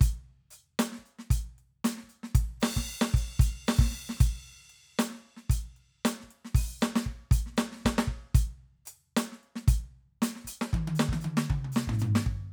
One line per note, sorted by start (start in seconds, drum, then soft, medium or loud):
0.01 closed hi-hat loud
0.01 kick loud
0.51 closed hi-hat medium
0.51 hi-hat pedal medium
0.79 closed hi-hat loud
0.79 snare loud
0.92 snare soft
0.94 snare soft
0.99 kick soft
1.05 closed hi-hat soft
1.19 snare soft
1.30 closed hi-hat loud
1.30 kick loud
1.58 closed hi-hat soft
1.84 closed hi-hat loud
1.84 snare loud
1.97 snare soft
2.00 kick soft
2.00 snare soft
2.05 closed hi-hat soft
2.05 snare soft
2.23 snare medium
2.35 kick loud
2.35 closed hi-hat loud
2.58 kick soft
2.58 hi-hat pedal soft
2.62 snare loud
2.62 crash loud
2.77 kick medium
2.77 snare medium
2.86 snare soft
3.01 snare loud
3.14 closed hi-hat medium
3.14 kick loud
3.39 closed hi-hat loud
3.39 kick loud
3.46 snare soft
3.65 snare loud
3.65 hi-hat pedal soft
3.65 crash loud
3.79 kick loud
3.79 snare medium
3.84 snare medium
3.91 snare soft
4.09 snare medium
4.17 closed hi-hat loud
4.17 kick loud
4.17 snare soft
4.70 closed hi-hat soft
4.99 closed hi-hat loud
4.99 snare loud
5.10 snare soft
5.14 snare soft
5.20 snare soft
5.37 snare soft
5.50 closed hi-hat loud
5.50 kick loud
5.76 closed hi-hat soft
6.05 closed hi-hat loud
6.05 snare loud
6.20 kick soft
6.20 snare soft
6.25 snare soft
6.31 closed hi-hat soft
6.45 snare soft
6.55 open hi-hat loud
6.55 kick loud
6.55 snare soft
6.81 snare loud
6.81 hi-hat pedal medium
6.96 snare loud
7.06 kick medium
7.31 closed hi-hat loud
7.31 kick loud
7.46 snare soft
7.52 snare soft
7.57 snare loud
7.57 hi-hat pedal medium
7.72 snare soft
7.75 snare soft
7.78 snare soft
7.80 snare soft
7.85 kick medium
7.85 snare loud
7.98 snare loud
8.07 kick medium
8.35 closed hi-hat loud
8.35 kick loud
8.85 closed hi-hat medium
8.85 hi-hat pedal medium
9.17 closed hi-hat loud
9.17 snare loud
9.32 snare soft
9.43 closed hi-hat soft
9.56 snare medium
9.68 closed hi-hat loud
9.68 kick loud
10.22 closed hi-hat loud
10.22 snare loud
10.35 snare soft
10.39 snare soft
10.43 closed hi-hat loud
10.43 kick soft
10.43 snare soft
10.61 snare medium
10.73 kick medium
10.73 high tom loud
10.87 high tom loud
10.95 hi-hat pedal medium
10.99 snare loud
11.09 kick medium
11.09 snare medium
11.13 high tom loud
11.21 hi-hat pedal medium
11.21 high tom loud
11.37 snare loud
11.50 kick medium
11.50 mid tom loud
11.65 mid tom loud
11.72 hi-hat pedal medium
11.76 snare loud
11.87 kick medium
11.87 floor tom loud
11.92 snare soft
11.99 floor tom loud
11.99 hi-hat pedal medium
12.15 snare loud
12.23 kick medium
12.23 hi-hat pedal soft